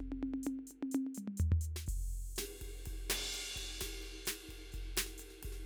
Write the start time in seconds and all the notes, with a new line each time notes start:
0.01 high tom
0.13 high tom
0.24 high tom
0.34 high tom
0.44 hi-hat pedal, high tom
0.60 high tom
0.68 hi-hat pedal, high tom
0.83 high tom
0.92 hi-hat pedal, high tom
1.07 high tom
1.15 hi-hat pedal, mid tom
1.28 mid tom
1.38 floor tom, hi-hat pedal
1.53 floor tom
1.62 kick, hi-hat pedal
1.77 snare
1.87 kick, hi-hat pedal, crash
2.37 snare, hi-hat pedal, ride
2.62 kick, ride
2.67 kick
2.76 snare
2.79 snare
2.86 kick, hi-hat pedal, ride
2.93 kick
3.10 snare, ride
3.33 hi-hat pedal, ride
3.57 kick, ride
3.81 kick, snare, hi-hat pedal, ride
3.88 kick
4.03 ride
4.26 snare, hi-hat pedal, ride
4.50 kick, ride
4.66 snare
4.73 kick, hi-hat pedal, ride
4.98 snare, ride
5.07 snare
5.19 hi-hat pedal, ride
5.31 snare
5.44 kick, ride
5.53 snare